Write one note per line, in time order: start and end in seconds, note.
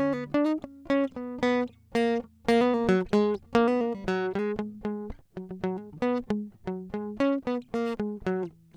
0.00 0.14 C#4
0.14 0.28 B3
0.35 0.61 D#4
0.64 0.86 C#4
0.91 1.10 C#4
1.18 1.40 B3
1.44 1.69 B3
1.96 2.23 A#3
2.50 2.62 A#3
2.62 2.75 B3
2.75 2.90 A#3
2.90 3.07 F#3
3.14 3.40 G#3
3.56 3.69 A#3
3.69 3.82 B3
3.82 3.94 A#3
3.94 4.10 G3
4.09 4.35 F#3
4.37 4.56 G#3
4.60 4.79 G#3
4.86 5.13 G#3
5.38 5.50 F#3
5.52 5.63 F#3
5.65 5.79 F#3
5.79 5.93 G#3
6.03 6.26 B3
6.31 6.53 G#3
6.69 6.85 F#3
6.95 7.21 G#3
7.21 7.43 C#4
7.48 7.66 B3
7.75 7.99 A#3
8.01 8.21 G#3
8.28 8.44 F#3
8.45 8.52 E3